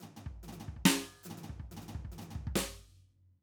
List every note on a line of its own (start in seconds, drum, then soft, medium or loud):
0.02 floor tom medium
0.02 high tom medium
0.16 floor tom medium
0.26 kick soft
0.43 high tom medium
0.48 floor tom medium
0.52 high tom medium
0.60 floor tom medium
0.68 kick soft
0.76 kick soft
0.85 snare loud
1.23 hi-hat pedal medium
1.23 high tom medium
1.30 floor tom medium
1.37 high tom medium
1.43 floor tom medium
1.49 kick soft
1.60 kick soft
1.71 high tom medium
1.77 floor tom medium
1.82 high tom medium
1.88 floor tom medium
1.95 kick soft
2.05 kick soft
2.12 high tom medium
2.18 floor tom medium
2.18 high tom medium
2.30 floor tom medium
2.35 kick soft
2.47 kick soft
2.55 snare loud